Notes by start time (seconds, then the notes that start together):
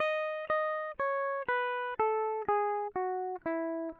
0.00 D#5
0.50 D#5
1.00 C#5
1.49 B4
1.99 A4
2.49 G#4
2.96 F#4
3.46 E4